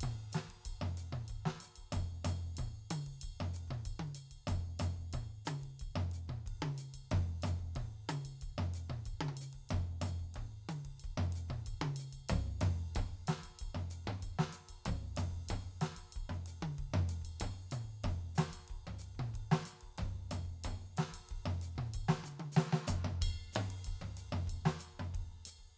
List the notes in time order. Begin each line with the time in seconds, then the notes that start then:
0.01 kick, mid tom, ride bell
0.33 snare, hi-hat pedal, ride bell
0.48 kick, ride
0.66 kick, ride bell
0.82 floor tom
0.98 hi-hat pedal, ride
1.13 kick, mid tom
1.29 kick, ride bell
1.46 snare
1.61 hi-hat pedal, ride bell
1.76 kick, ride bell
1.93 kick, floor tom, ride bell
2.25 floor tom, hi-hat pedal, ride bell
2.43 kick
2.58 kick, mid tom, ride bell
2.91 hi-hat pedal, high tom, ride bell
3.07 kick, ride
3.22 kick, ride bell
3.41 floor tom
3.54 hi-hat pedal, ride
3.68 kick, mid tom
3.86 kick, ride bell
4.00 high tom
4.15 hi-hat pedal, ride bell
4.31 kick, ride bell
4.48 kick, floor tom, ride bell
4.80 floor tom, hi-hat pedal, ride bell
4.97 kick
5.13 kick, mid tom, ride bell
5.46 hi-hat pedal, high tom, ride bell
5.62 kick, ride
5.80 kick, ride bell
5.96 floor tom
6.12 hi-hat pedal, ride
6.28 kick, mid tom
6.47 kick, ride
6.63 high tom
6.78 hi-hat pedal, ride bell
6.94 kick, ride bell
7.12 kick, floor tom, ride
7.43 floor tom, hi-hat pedal, ride bell
7.59 kick
7.76 kick, mid tom, ride
8.09 hi-hat pedal, high tom, ride bell
8.25 kick, ride bell
8.42 kick, ride bell
8.59 floor tom
8.74 hi-hat pedal, ride
8.89 kick, mid tom
9.06 kick, ride bell
9.21 high tom
9.29 high tom
9.37 hi-hat pedal, ride bell
9.53 kick, ride
9.70 kick, floor tom, ride bell
10.02 floor tom, hi-hat pedal, ride bell
10.20 kick
10.35 kick, mid tom, ride
10.69 hi-hat pedal, high tom, ride
10.85 kick, ride
11.00 ride bell
11.04 kick
11.18 floor tom
11.33 hi-hat pedal, ride
11.49 kick, mid tom
11.67 kick, ride bell
11.82 high tom
11.88 high tom
11.97 hi-hat pedal, ride bell
12.13 kick, ride bell
12.29 kick, ride bell, floor tom
12.61 floor tom, hi-hat pedal, ride
12.96 kick, mid tom, ride bell
13.28 snare, hi-hat pedal, ride bell
13.43 kick, ride bell
13.60 kick, ride bell
13.75 floor tom
13.91 hi-hat pedal, ride
14.05 kick, mid tom
14.23 kick, ride bell
14.39 snare
14.53 hi-hat pedal, ride
14.69 kick, ride bell
14.86 kick, ride bell, floor tom
15.17 floor tom, hi-hat pedal, ride
15.31 kick
15.49 kick, mid tom, ride bell
15.82 snare, hi-hat pedal, ride bell
15.97 kick, ride bell
16.13 kick, ride bell
16.30 floor tom
16.47 hi-hat pedal, ride
16.61 kick, high tom
16.79 kick, ride
16.94 floor tom
17.09 hi-hat pedal, ride
17.22 kick, ride bell
17.41 kick, mid tom, ride bell
17.72 hi-hat pedal, mid tom, ride bell
17.84 kick
18.04 kick, floor tom, ride
18.36 snare, hi-hat pedal, ride bell
18.51 kick, ride bell
18.69 kick, ride
18.87 floor tom
18.99 hi-hat pedal, ride
19.15 kick
19.20 mid tom
19.34 kick, ride
19.52 snare
19.66 hi-hat pedal, ride bell
19.81 kick, ride
19.98 kick, ride, floor tom
20.32 floor tom, hi-hat pedal, ride bell
20.46 kick
20.64 kick, mid tom, ride bell
20.97 snare, hi-hat pedal, ride
21.12 kick, ride bell
21.30 kick, ride
21.46 floor tom
21.62 hi-hat pedal, ride
21.76 kick, mid tom
21.94 kick, ride bell
22.09 snare
22.24 hi-hat pedal, high tom
22.40 high tom
22.53 kick, hi-hat pedal
22.57 snare
22.73 snare
22.88 kick, floor tom, hi-hat pedal
23.05 floor tom
23.22 kick, ride bell
23.44 kick
23.53 hi-hat pedal, mid tom, ride
23.67 kick, ride
23.85 kick, ride bell
24.02 floor tom
24.18 hi-hat pedal, ride
24.29 kick, floor tom
24.48 kick, ride bell
24.66 snare
24.80 hi-hat pedal, ride bell
24.94 kick
25.00 floor tom
25.15 kick, ride
25.46 hi-hat pedal, ride bell
25.59 kick